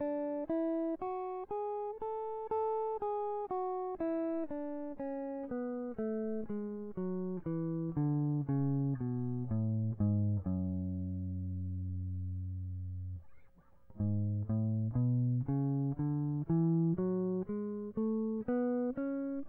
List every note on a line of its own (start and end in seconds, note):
0.01 0.47 D4
0.50 0.98 E4
1.02 1.47 F#4
1.51 2.00 G#4
2.03 2.51 A4
2.51 3.00 A4
3.02 3.51 G#4
3.51 3.98 F#4
4.01 4.48 E4
4.50 4.98 D4
5.00 5.46 C#4
5.48 5.95 B3
6.00 6.46 A3
6.52 6.94 G#3
7.00 7.42 F#3
7.48 7.94 E3
7.98 8.45 D3
8.50 8.97 C#3
8.99 9.47 B2
9.53 9.96 A2
10.03 10.41 G#2
10.49 13.20 F#2
14.02 14.47 G#2
14.52 14.92 A2
14.98 15.46 B2
15.50 15.95 C#3
16.01 16.46 D3
16.51 16.97 E3
16.99 17.46 F#3
17.51 17.94 G#3
17.98 18.45 A3
18.49 18.94 B3
18.99 19.46 C#4